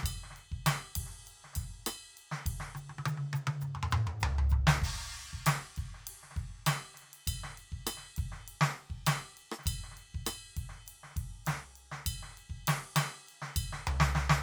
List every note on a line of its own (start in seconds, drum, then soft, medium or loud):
0.01 kick medium
0.01 hi-hat pedal soft
0.06 ride bell loud
0.10 kick soft
0.24 snare soft
0.31 snare soft
0.36 ride soft
0.52 kick soft
0.66 snare loud
0.66 hi-hat pedal medium
0.66 ride bell loud
0.96 kick soft
0.96 ride loud
1.02 kick soft
1.06 snare soft
1.26 hi-hat pedal soft
1.26 ride soft
1.44 snare soft
1.54 kick soft
1.54 snare soft
1.54 ride bell medium
1.63 kick soft
1.86 cross-stick medium
1.86 hi-hat pedal medium
1.86 ride bell loud
2.17 ride soft
2.32 snare medium
2.46 kick medium
2.46 ride loud
2.53 kick soft
2.56 kick soft
2.60 snare medium
2.75 hi-hat pedal medium
2.75 high tom medium
2.90 high tom medium
2.98 high tom medium
3.06 hi-hat pedal loud
3.06 high tom loud
3.18 high tom medium
3.33 hi-hat pedal medium
3.33 high tom medium
3.47 high tom loud
3.61 hi-hat pedal loud
3.61 mid tom soft
3.75 mid tom medium
3.83 mid tom loud
3.91 hi-hat pedal medium
3.91 mid tom loud
4.07 mid tom loud
4.20 kick soft
4.20 hi-hat pedal medium
4.20 floor tom loud
4.38 floor tom medium
4.50 kick soft
4.50 floor tom medium
4.50 hi-hat pedal medium
4.59 kick soft
4.67 snare loud
4.76 cross-stick soft
4.82 kick medium
4.82 hi-hat pedal medium
4.82 crash loud
4.96 kick soft
5.33 kick soft
5.46 snare loud
5.46 hi-hat pedal medium
5.46 ride bell loud
5.56 snare soft
5.77 kick soft
5.77 ride soft
5.84 kick soft
5.94 snare soft
6.07 ride loud
6.23 snare soft
6.31 snare soft
6.37 kick soft
6.37 ride soft
6.43 kick soft
6.67 snare loud
6.67 hi-hat pedal medium
6.67 ride bell loud
6.78 snare soft
6.93 snare soft
6.93 hi-hat pedal soft
6.98 ride soft
7.02 snare soft
7.07 snare soft
7.12 snare soft
7.12 ride medium
7.16 snare soft
7.25 kick soft
7.25 hi-hat pedal soft
7.25 ride bell loud
7.34 kick soft
7.44 snare soft
7.58 ride soft
7.72 kick soft
7.87 cross-stick medium
7.87 hi-hat pedal medium
7.87 ride bell loud
7.97 snare soft
8.17 kick medium
8.17 ride medium
8.26 kick soft
8.32 snare soft
8.48 ride medium
8.61 snare loud
8.69 snare soft
8.78 ride soft
8.90 kick soft
9.06 snare loud
9.06 hi-hat pedal medium
9.06 ride bell loud
9.37 ride soft
9.52 cross-stick medium
9.59 snare soft
9.59 hi-hat pedal medium
9.66 kick medium
9.66 ride bell loud
9.72 kick soft
9.78 kick soft
9.84 snare soft
9.92 snare soft
9.97 ride soft
10.15 kick soft
10.20 kick soft
10.26 cross-stick medium
10.26 hi-hat pedal medium
10.26 ride bell loud
10.57 kick soft
10.57 ride medium
10.63 kick soft
10.69 snare soft
10.86 hi-hat pedal medium
10.86 ride medium
11.04 snare soft
11.11 snare soft
11.17 kick soft
11.17 ride medium
11.23 kick soft
11.45 snare medium
11.45 hi-hat pedal medium
11.45 ride medium
11.45 floor tom soft
11.76 ride soft
11.92 snare medium
12.05 kick soft
12.05 hi-hat pedal soft
12.05 ride bell loud
12.13 kick soft
12.23 snare soft
12.30 snare soft
12.38 ride soft
12.50 kick soft
12.67 snare loud
12.67 hi-hat pedal medium
12.67 ride loud
12.96 snare loud
12.96 ride bell loud
13.02 snare medium
13.27 hi-hat pedal soft
13.27 ride soft
13.42 snare medium
13.54 kick medium
13.54 hi-hat pedal soft
13.54 ride bell loud
13.63 kick soft
13.68 kick soft
13.73 snare medium
13.87 hi-hat pedal medium
13.87 floor tom loud
14.00 snare loud
14.15 snare medium
14.30 snare loud